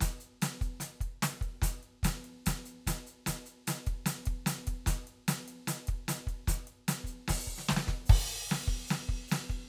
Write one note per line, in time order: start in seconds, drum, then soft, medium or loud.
0.01 closed hi-hat loud
0.01 kick medium
0.01 snare medium
0.21 closed hi-hat soft
0.42 closed hi-hat loud
0.42 snare loud
0.62 closed hi-hat medium
0.62 kick medium
0.80 closed hi-hat loud
0.80 snare medium
1.01 kick soft
1.01 closed hi-hat medium
1.23 closed hi-hat loud
1.23 snare loud
1.42 kick medium
1.42 closed hi-hat soft
1.62 closed hi-hat loud
1.62 kick medium
1.62 snare medium
1.74 kick soft
1.83 closed hi-hat soft
2.03 closed hi-hat loud
2.03 kick medium
2.03 snare loud
2.25 closed hi-hat soft
2.46 closed hi-hat loud
2.46 kick soft
2.46 snare loud
2.66 closed hi-hat medium
2.87 closed hi-hat loud
2.87 kick soft
2.87 snare loud
3.07 closed hi-hat medium
3.27 closed hi-hat loud
3.27 kick soft
3.27 snare loud
3.46 closed hi-hat medium
3.68 closed hi-hat loud
3.68 snare loud
3.87 kick medium
3.87 closed hi-hat medium
4.06 closed hi-hat loud
4.06 snare loud
4.26 kick medium
4.26 closed hi-hat medium
4.47 closed hi-hat loud
4.47 snare loud
4.51 snare medium
4.67 kick medium
4.67 closed hi-hat medium
4.87 open hi-hat loud
4.87 kick medium
4.87 snare loud
5.07 closed hi-hat soft
5.28 closed hi-hat loud
5.28 snare loud
5.48 closed hi-hat medium
5.68 closed hi-hat loud
5.68 snare loud
5.88 kick medium
5.88 closed hi-hat medium
6.09 closed hi-hat loud
6.09 snare loud
6.27 kick soft
6.27 closed hi-hat soft
6.48 open hi-hat loud
6.48 kick medium
6.48 snare medium
6.67 closed hi-hat soft
6.88 closed hi-hat loud
6.88 snare loud
7.05 closed hi-hat medium
7.05 kick soft
7.28 open hi-hat loud
7.28 kick medium
7.28 snare loud
7.48 open hi-hat soft
7.48 kick soft
7.58 snare medium
7.66 snare loud
7.66 hi-hat pedal medium
7.72 kick soft
7.77 snare loud
7.87 kick medium
7.87 snare medium
8.06 kick loud
8.06 hi-hat pedal medium
8.06 crash loud
8.17 snare soft
8.49 snare loud
8.49 hi-hat pedal medium
8.49 crash medium
8.55 ride soft
8.68 kick medium
8.88 snare loud
8.88 hi-hat pedal medium
8.88 ride bell soft
9.09 kick medium
9.28 snare loud
9.28 hi-hat pedal medium
9.33 ride bell medium
9.50 kick soft
9.50 ride bell soft